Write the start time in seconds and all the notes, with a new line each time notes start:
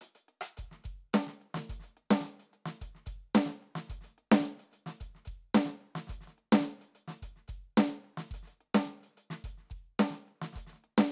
0.01 closed hi-hat
0.15 closed hi-hat
0.28 closed hi-hat
0.41 cross-stick
0.57 closed hi-hat, kick
0.64 kick
0.67 kick
0.71 snare
0.79 snare
0.84 closed hi-hat, kick
1.13 closed hi-hat, snare
1.27 closed hi-hat, snare
1.41 closed hi-hat
1.54 snare
1.69 closed hi-hat, kick, snare
1.75 kick
1.80 closed hi-hat, snare
1.84 snare
1.88 snare
1.97 closed hi-hat
2.11 snare
2.20 snare
2.25 closed hi-hat
2.39 closed hi-hat
2.53 closed hi-hat
2.66 snare
2.81 closed hi-hat, kick
2.95 snare
3.00 snare
3.05 closed hi-hat, kick, hi-hat pedal
3.16 kick
3.34 closed hi-hat, snare
3.45 snare
3.50 open hi-hat
3.62 closed hi-hat
3.75 snare
3.87 closed hi-hat, kick, snare
4.01 closed hi-hat, snare
4.06 snare
4.18 closed hi-hat
4.31 snare
4.39 snare
4.46 closed hi-hat
4.55 snare
4.59 closed hi-hat
4.71 closed hi-hat, hi-hat pedal
4.86 snare
5.00 closed hi-hat, kick
5.15 snare
5.21 snare
5.25 closed hi-hat, kick
5.35 kick
5.54 closed hi-hat, snare
5.65 closed hi-hat, snare
5.81 closed hi-hat
5.95 snare
6.07 closed hi-hat, kick, snare
6.15 kick
6.21 closed hi-hat, snare
6.27 snare
6.38 closed hi-hat
6.52 snare
6.60 snare
6.67 closed hi-hat
6.78 closed hi-hat, snare
6.95 closed hi-hat
7.08 snare
7.22 closed hi-hat, kick
7.36 snare
7.48 closed hi-hat, kick
7.57 kick
7.77 closed hi-hat, snare
7.87 snare
7.91 closed hi-hat
8.04 closed hi-hat
8.17 snare
8.28 kick, snare
8.34 closed hi-hat, kick
8.43 snare
8.47 closed hi-hat, snare
8.61 closed hi-hat
8.74 snare
8.85 snare
8.89 closed hi-hat
9.00 open hi-hat, snare
9.04 snare
9.08 snare
9.12 hi-hat pedal
9.17 closed hi-hat
9.30 snare
9.44 closed hi-hat, kick
9.50 kick
9.57 snare
9.62 snare
9.65 snare
9.70 kick, closed hi-hat
9.99 closed hi-hat, snare
10.10 closed hi-hat, snare
10.25 closed hi-hat, hi-hat pedal
10.42 snare
10.53 kick, snare
10.57 closed hi-hat
10.67 closed hi-hat, snare
10.73 snare
10.84 closed hi-hat
10.98 snare